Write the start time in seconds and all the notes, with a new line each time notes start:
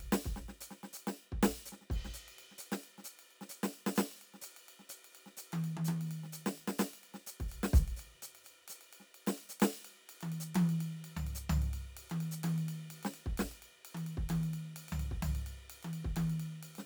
0.01 ride
0.13 snare
0.25 kick, ride
0.37 snare
0.49 snare
0.61 hi-hat pedal, ride
0.71 snare
0.84 snare
0.94 hi-hat pedal, ride
1.08 snare
1.33 kick
1.43 snare, ride
1.66 hi-hat pedal
1.73 snare
1.82 snare
1.91 kick, ride
2.05 snare
2.14 hi-hat pedal, ride
2.29 ride
2.39 ride
2.52 snare
2.59 hi-hat pedal, ride
2.73 snare, ride
2.80 hi-hat pedal
2.84 ride
2.99 snare
3.05 hi-hat pedal, ride
3.20 ride
3.26 hi-hat pedal
3.31 ride
3.42 snare
3.50 hi-hat pedal, ride
3.64 snare, ride
3.75 ride
3.87 snare
3.96 snare, hi-hat pedal, ride
4.12 ride
4.17 hi-hat pedal
4.22 ride
4.34 snare
4.42 hi-hat pedal, ride
4.57 ride
4.64 hi-hat pedal
4.69 ride
4.80 snare
4.90 hi-hat pedal, ride
5.05 ride
5.12 hi-hat pedal, ride
5.27 snare
5.38 hi-hat pedal, ride
5.53 high tom, ride
5.59 hi-hat pedal
5.65 ride
5.78 high tom
5.85 hi-hat pedal, high tom, ride
6.02 ride
6.07 hi-hat pedal
6.12 ride
6.24 snare
6.33 hi-hat pedal, ride
6.47 snare, ride
6.55 hi-hat pedal, ride
6.68 snare
6.79 snare, hi-hat pedal, ride
6.94 ride
7.04 ride
7.15 snare
7.27 hi-hat pedal, ride
7.41 kick, ride
7.49 hi-hat pedal, ride
7.64 snare
7.74 kick, hi-hat pedal, ride
7.88 ride
7.97 hi-hat pedal, ride
8.23 hi-hat pedal, ride
8.36 ride
8.44 hi-hat pedal, ride
8.69 hi-hat pedal, ride
8.82 ride
8.91 hi-hat pedal, ride
9.01 snare
9.15 ride
9.27 snare, ride
9.39 ride
9.50 hi-hat pedal
9.61 snare, ride
9.74 ride
9.85 ride
10.10 ride
10.21 high tom, ride
10.33 ride
10.41 hi-hat pedal
10.55 high tom, ride
10.70 ride
10.81 ride
11.05 ride
11.17 floor tom, ride
11.27 ride
11.36 hi-hat pedal
11.50 floor tom, ride
11.63 ride
11.74 ride
11.97 ride
12.11 high tom, ride
12.21 ride
12.32 hi-hat pedal
12.44 high tom, ride
12.59 ride
12.69 ride
12.91 ride
13.04 snare, ride
13.14 ride
13.27 kick
13.38 snare, ride
13.52 ride
13.63 ride
13.86 ride
13.95 high tom, ride
14.07 ride
14.18 kick
14.30 high tom, ride
14.44 ride
14.54 ride
14.77 ride
14.89 floor tom, ride
15.00 ride
15.12 kick
15.23 floor tom, ride
15.36 ride
15.47 ride
15.71 ride
15.83 high tom, ride
15.94 ride
16.05 kick
16.17 high tom, ride
16.30 ride
16.40 ride
16.63 ride
16.76 snare, ride